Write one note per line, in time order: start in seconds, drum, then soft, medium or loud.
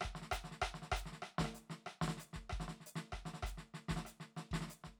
0.01 kick soft
0.01 cross-stick medium
0.15 snare soft
0.22 snare soft
0.32 kick soft
0.32 cross-stick medium
0.32 hi-hat pedal medium
0.44 snare soft
0.51 snare soft
0.62 kick soft
0.62 cross-stick medium
0.74 snare soft
0.82 snare soft
0.92 kick soft
0.92 cross-stick medium
0.96 hi-hat pedal medium
1.06 snare soft
1.12 snare soft
1.22 cross-stick medium
1.38 kick soft
1.38 snare medium
1.45 cross-stick medium
1.54 snare soft
1.54 hi-hat pedal soft
1.70 snare soft
1.86 cross-stick medium
2.02 kick soft
2.02 snare medium
2.08 snare medium
2.17 snare soft
2.17 hi-hat pedal medium
2.33 kick soft
2.33 snare soft
2.50 kick soft
2.50 cross-stick medium
2.60 snare soft
2.68 snare soft
2.80 snare soft
2.86 hi-hat pedal medium
2.96 snare medium
3.12 kick soft
3.12 cross-stick medium
3.26 snare soft
3.34 snare soft
3.43 kick soft
3.43 cross-stick medium
3.43 hi-hat pedal soft
3.50 kick soft
3.58 snare soft
3.74 snare soft
3.89 kick soft
3.89 snare medium
3.96 snare medium
4.05 cross-stick soft
4.05 hi-hat pedal medium
4.20 snare soft
4.37 snare soft
4.51 kick soft
4.51 snare medium
4.61 snare soft
4.67 snare soft
4.67 hi-hat pedal medium
4.84 kick soft
4.84 snare soft